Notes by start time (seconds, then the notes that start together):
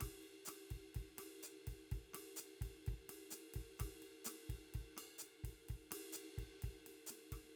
0.01 kick, cross-stick, ride
0.08 kick
0.23 ride
0.46 cross-stick, hi-hat pedal, ride
0.71 kick, ride
0.77 kick
0.95 kick, ride
1.02 kick
1.18 cross-stick, ride
1.43 hi-hat pedal, ride
1.68 kick, ride
1.73 kick
1.92 kick, ride
1.98 kick
2.14 cross-stick, snare, ride
2.37 hi-hat pedal, ride
2.62 kick, ride
2.67 kick
2.87 kick, ride
2.94 kick
3.09 cross-stick, ride
3.31 snare, hi-hat pedal, ride
3.54 kick, snare, ride
3.62 kick
3.78 kick, cross-stick, hi-hat pedal, ride
3.87 kick
4.03 ride
4.25 cross-stick, snare, hi-hat pedal, ride
4.50 kick, ride
4.55 kick
4.75 kick, ride
4.81 kick
4.97 cross-stick, snare, ride bell
5.19 hi-hat pedal
5.23 ride
5.44 kick, ride
5.50 kick
5.69 kick, ride
5.75 kick
5.91 cross-stick, snare, ride
6.13 hi-hat pedal, ride
6.38 kick, ride
6.44 kick
6.63 kick, ride
6.69 kick
6.87 snare, ride
7.07 snare, hi-hat pedal, ride
7.33 kick, cross-stick, snare, ride
7.44 snare